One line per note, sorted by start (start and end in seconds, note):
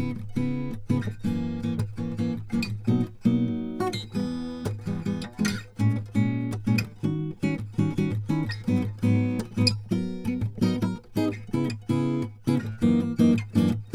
0.00 0.21 C#3
0.00 0.15 B3
0.00 0.19 E4
0.37 0.76 C#3
0.37 0.79 B3
0.37 0.79 E4
0.90 1.03 C#3
0.90 1.03 B3
0.90 1.04 E4
1.25 1.62 F#2
1.25 1.62 E3
1.25 1.62 A#3
1.25 1.62 C#4
1.65 1.90 F#2
1.65 1.86 E3
1.65 1.76 A#3
1.65 1.85 C#4
1.98 2.17 F#2
1.98 2.17 E3
1.98 2.16 A#3
1.98 2.14 C#4
2.19 2.41 F#2
2.19 2.42 E3
2.19 2.37 A#3
2.19 2.41 C#4
2.53 2.67 F#2
2.53 2.71 E3
2.53 2.64 A#3
2.53 2.66 C#4
2.88 3.08 B2
2.88 3.08 F#3
2.88 3.08 A#3
2.88 3.11 D#4
3.26 3.55 B2
3.26 3.92 F#3
3.26 3.93 A#3
3.26 3.81 D#4
3.81 3.94 D#4
3.81 4.00 F#4
3.94 4.06 D3
4.13 4.77 E2
4.13 4.70 E3
4.13 4.72 B3
4.86 5.05 E2
4.86 5.04 E3
4.86 5.02 B3
5.06 5.26 E2
5.06 5.28 E3
5.06 5.27 B3
5.39 5.53 E2
5.39 5.59 B3
5.79 6.00 A2
5.79 6.00 G#3
5.79 6.01 C#4
5.79 5.91 E4
6.16 6.55 A#2
6.16 6.59 G#3
6.16 6.58 C#4
6.16 6.27 E4
6.67 6.79 A#2
6.67 6.80 G#3
6.67 6.81 C#4
6.67 6.78 E4
6.80 6.91 G2
7.04 7.34 D#3
7.04 7.35 C#4
7.04 7.34 F#4
7.43 7.59 D#3
7.43 7.64 C#4
7.43 7.57 F#4
7.79 7.93 D#3
7.79 7.96 C#4
7.79 7.94 F#4
7.99 8.14 D#3
7.99 8.20 C#4
7.99 8.15 F#4
8.30 8.48 D#3
8.30 8.49 C#4
8.30 8.49 E4
8.68 8.92 G2
8.68 8.85 F#3
8.68 8.88 B3
8.68 8.90 D#4
9.04 9.40 G#2
9.04 9.43 F#3
9.04 9.41 B3
9.04 9.44 D#4
9.57 9.65 G#2
9.57 9.68 F#3
9.57 9.74 B3
9.57 9.73 D#4
9.92 10.26 F#3
9.92 10.25 B3
10.08 10.45 A#4
10.26 10.42 F#3
10.26 10.45 B3
10.62 10.78 F#3
10.62 10.81 B3
10.62 10.78 D#4
10.62 10.78 A#4
10.83 11.00 F#3
10.83 11.01 B3
10.83 10.96 E4
10.83 11.00 A#4
11.17 11.34 F#3
11.17 11.34 B3
11.17 11.35 D#4
11.17 11.36 G#4
11.54 11.71 C#3
11.54 11.75 B3
11.54 11.74 E4
11.54 11.73 G#4
11.90 12.25 C#3
11.90 12.29 B3
11.90 12.28 E4
11.90 12.25 G#4
12.48 12.62 C#3
12.48 12.61 B3
12.48 12.61 E4
12.48 12.64 G#4
12.83 13.11 F#2
12.83 13.15 E3
12.83 13.01 A#3
12.83 13.06 D#4
13.01 13.15 A#3
13.20 13.39 F#2
13.20 13.39 E3
13.20 13.39 A#3
13.20 13.38 D#4
13.56 13.77 F#2
13.56 13.81 E3
13.56 13.78 A#3
13.56 13.78 D4